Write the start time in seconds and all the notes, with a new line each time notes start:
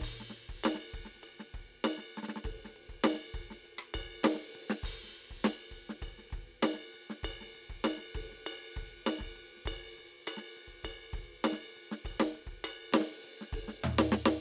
0.01 kick, hi-hat pedal, crash
0.09 kick
0.20 snare
0.30 snare
0.49 kick
0.64 snare, hi-hat pedal, ride bell
0.75 snare
0.94 kick, ride
1.00 kick
1.05 snare
1.16 snare
1.24 hi-hat pedal, ride bell
1.40 snare
1.53 kick, ride
1.84 snare, hi-hat pedal, ride bell
1.98 snare
2.18 snare
2.23 snare
2.29 snare
2.36 snare
2.44 kick, snare, hi-hat pedal, ride
2.57 kick
2.65 snare
2.69 snare
2.77 ride
2.89 kick
3.04 snare, hi-hat pedal, ride bell
3.14 snare
3.34 kick, ride
3.41 kick
3.51 snare
3.65 hi-hat pedal, ride
3.79 cross-stick
3.94 kick, ride bell
4.02 kick
4.05 kick
4.24 snare, hi-hat pedal, ride
4.35 snare
4.55 ride
4.70 snare
4.82 kick, hi-hat pedal, crash
4.96 kick
5.04 snare
5.08 snare
5.12 snare
5.31 kick
5.45 snare, hi-hat pedal, ride bell
5.71 kick, ride
5.90 snare
6.02 kick, hi-hat pedal, ride bell
6.19 snare
6.25 snare
6.31 kick, ride
6.40 kick
6.62 snare, hi-hat pedal, ride bell
6.74 snare
6.95 ride
7.10 snare
7.24 kick, hi-hat pedal, ride bell
7.30 kick
7.41 snare
7.47 snare
7.50 snare
7.55 ride
7.70 kick
7.84 snare, hi-hat pedal, ride bell
7.98 snare
8.15 kick, ride
8.22 kick
8.31 snare
8.46 hi-hat pedal, ride bell
8.77 kick, ride
8.83 kick
8.86 kick
9.03 hi-hat pedal
9.07 snare, ride bell
9.19 kick, snare
9.27 kick
9.36 ride
9.57 snare
9.66 kick, hi-hat pedal, ride bell
9.73 kick
9.99 ride
10.28 cross-stick, hi-hat pedal, ride bell
10.37 snare
10.57 ride
10.68 kick
10.83 kick, snare, hi-hat pedal, ride bell
11.13 kick, ride
11.25 kick
11.42 snare, hi-hat pedal, ride bell
11.53 snare
11.77 ride
11.92 snare
12.04 kick, hi-hat pedal, ride bell
12.11 kick
12.20 snare
12.35 ride
12.47 kick
12.53 kick
12.64 cross-stick, hi-hat pedal, ride bell
12.93 snare, ride
13.00 snare
13.23 hi-hat pedal, ride
13.41 snare
13.53 kick, ride
13.60 kick
13.63 kick
13.68 snare
13.84 hi-hat pedal, floor tom
13.99 snare
14.12 snare
14.26 snare